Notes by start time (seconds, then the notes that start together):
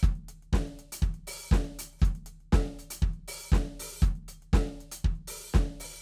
0.01 kick, closed hi-hat, hi-hat pedal
0.16 closed hi-hat
0.24 kick
0.29 closed hi-hat
0.43 closed hi-hat
0.53 kick, snare
0.68 closed hi-hat
0.79 closed hi-hat
0.92 closed hi-hat
1.02 kick, closed hi-hat
1.14 closed hi-hat
1.27 open hi-hat
1.48 kick, hi-hat pedal
1.53 snare
1.65 closed hi-hat
1.70 kick
1.79 open hi-hat
1.93 open hi-hat
1.99 kick, hi-hat pedal
2.05 closed hi-hat
2.15 closed hi-hat
2.26 closed hi-hat
2.41 closed hi-hat
2.53 kick, snare
2.66 closed hi-hat
2.79 closed hi-hat
2.91 closed hi-hat
3.02 kick, closed hi-hat
3.14 closed hi-hat
3.28 open hi-hat
3.43 open hi-hat
3.48 kick, hi-hat pedal
3.54 snare
3.66 closed hi-hat
3.80 open hi-hat
3.94 open hi-hat
4.01 kick, closed hi-hat, hi-hat pedal
4.16 closed hi-hat
4.22 kick
4.28 closed hi-hat
4.42 closed hi-hat
4.53 kick, snare
4.67 closed hi-hat
4.81 closed hi-hat
4.92 closed hi-hat
5.04 kick, closed hi-hat
5.15 closed hi-hat
5.28 open hi-hat
5.42 open hi-hat
5.53 kick, snare, hi-hat pedal
5.80 open hi-hat
5.94 open hi-hat